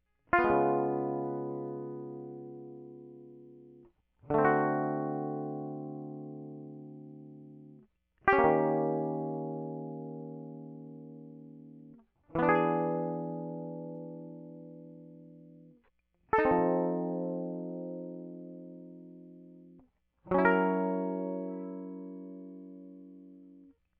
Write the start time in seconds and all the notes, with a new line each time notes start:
0.33 F4
0.39 B3
0.45 G#3
0.51 C#3
4.31 D3 A3
4.39 C4
4.45 F#4
8.28 G4
8.33 C#4
8.39 A#3
8.45 D#3
12.36 E3 B3
12.43 D4
12.49 G#4
16.33 A4
16.39 D#4
16.45 C4
16.52 F3
20.32 F#3 C#4
20.38 E4
20.45 A#4